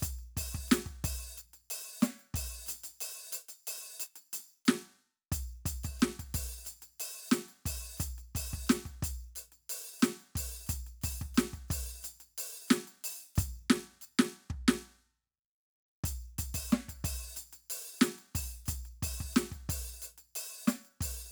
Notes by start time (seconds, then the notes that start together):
0.01 kick, percussion
0.03 percussion
0.19 percussion
0.37 kick, percussion
0.55 kick
0.68 snare, percussion
0.72 percussion
0.86 kick, percussion
1.04 kick, percussion
1.38 percussion
1.54 percussion
1.71 percussion
2.01 snare, percussion
2.03 percussion
2.20 percussion
2.34 kick, percussion
2.67 percussion
2.69 percussion
2.84 percussion
3.01 percussion
3.32 percussion
3.49 percussion
3.68 percussion
4.00 percussion
4.03 percussion
4.16 percussion
4.33 percussion
4.66 snare, percussion
5.32 kick, percussion
5.66 kick, percussion
5.84 kick, percussion
6.00 snare, percussion
6.20 kick, percussion
6.35 kick, percussion
6.66 percussion
6.83 percussion
7.00 percussion
7.29 snare, percussion
7.33 percussion
7.49 percussion
7.66 kick, percussion
7.98 kick, percussion
8.01 percussion
8.18 percussion
8.35 kick, percussion
8.54 kick
8.67 snare, percussion
8.70 percussion
8.86 kick, percussion
9.03 kick, percussion
9.36 percussion
9.52 percussion
9.70 percussion
10.00 snare, percussion
10.03 percussion
10.20 percussion
10.36 kick, percussion
10.67 kick, percussion
10.70 percussion
10.87 percussion
11.02 kick, percussion
11.04 percussion
11.22 kick
11.35 snare, percussion
11.38 percussion
11.54 kick, percussion
11.69 kick, percussion
11.72 percussion
12.03 percussion
12.21 percussion
12.38 percussion
12.69 snare, percussion
12.71 percussion
12.88 percussion
13.04 percussion
13.36 kick, percussion
13.39 percussion
13.70 snare
14.02 percussion
14.19 snare
14.50 kick
14.68 snare
16.04 kick, percussion
16.39 kick, percussion
16.55 kick, percussion
16.71 snare, percussion
16.89 kick, percussion
17.05 kick, percussion
17.36 percussion
17.53 percussion
17.70 percussion
17.99 snare, percussion
18.02 percussion
18.18 percussion
18.35 kick, percussion
18.66 percussion
18.68 kick, percussion
18.86 percussion
19.03 kick, percussion
19.21 kick
19.33 snare, percussion
19.37 percussion
19.52 kick, percussion
19.69 kick, percussion
20.02 percussion
20.18 percussion
20.36 percussion
20.66 snare, percussion
20.68 percussion
20.85 percussion
21.01 kick, percussion